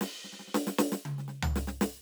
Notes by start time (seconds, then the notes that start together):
0.02 snare, ride
0.24 snare
0.32 snare
0.39 snare
0.47 snare
0.54 snare
0.67 snare
0.78 snare
0.92 snare
1.05 mid tom
1.18 snare
1.28 snare
1.43 floor tom
1.56 snare
1.67 snare
1.81 snare